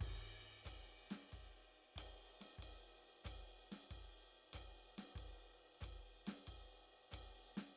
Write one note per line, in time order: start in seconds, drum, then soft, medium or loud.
0.01 kick soft
0.01 ride medium
0.65 kick soft
0.65 hi-hat pedal medium
0.65 ride medium
1.11 snare soft
1.11 ride medium
1.33 kick soft
1.33 ride medium
1.96 kick soft
1.96 hi-hat pedal medium
1.96 ride loud
2.41 snare soft
2.41 ride medium
2.59 kick soft
2.63 ride medium
3.25 kick soft
3.25 hi-hat pedal medium
3.25 ride medium
3.72 snare soft
3.72 ride medium
3.91 kick soft
3.91 ride medium
4.53 kick soft
4.53 hi-hat pedal medium
4.53 ride medium
4.98 snare soft
4.98 ride medium
5.16 kick soft
5.16 ride medium
5.81 kick soft
5.81 hi-hat pedal medium
5.81 ride medium
6.27 snare soft
6.27 ride medium
6.47 kick soft
6.47 ride medium
7.12 kick soft
7.12 hi-hat pedal medium
7.12 ride medium
7.57 snare soft
7.57 ride medium